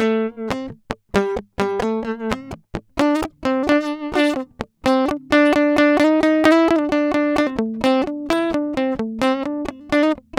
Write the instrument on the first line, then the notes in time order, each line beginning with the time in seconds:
acoustic guitar
0.01 A3
1.16 G3
1.61 G3
1.81 A3
2.04 A3
3.00 D4
3.46 C4
3.70 D4
4.16 D4
4.35 C4
4.87 C4
5.33 D4
5.54 D4
5.77 D4
5.98 D#4
6.25 D#4
6.45 E4
6.69 E4
6.78 D4
6.93 D4
7.13 D4
7.37 D4
7.48 C4
7.60 A3
7.85 C4
8.09 D4
8.31 E4
8.56 D4
8.78 C4
9.01 A3
9.22 C4
9.45 D4
9.67 C4
9.94 D4